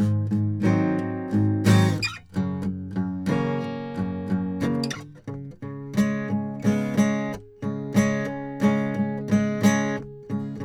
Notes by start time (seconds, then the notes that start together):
0.00 G#2 D#3
0.32 G#2 D#3
0.62 G#2 D#3
0.66 F#3 C4
0.71 D#4
1.34 G#2 D#3
1.66 G#2 D#3 F#3 C4
1.99 E2
2.37 F#2 C#3
2.63 F#2 C#3
2.97 F#2
3.27 F#2 C#3 E3
3.32 A#3 C#4
3.63 C#3
3.98 F#2 C#3
4.32 F#2
4.63 C#3 E3 A#3 C#4
4.92 D3
5.29 C#3
5.63 C#3
5.95 C#3 G#3
6.00 C#4
6.24 G#3
6.31 C#3
6.57 B3
6.64 C#3 G#3
6.96 C#3 G#3
7.01 C#4
7.63 C#3 G#3 C#4
7.96 C#3 G#3 C#4
8.27 C#3 G#3
8.62 C#3 G#3
8.66 C#4
8.96 C#3 G#3
9.20 B3
9.29 C#3 G#3
9.63 C#3 G#3 C#4
10.31 C#3 G#3 C#4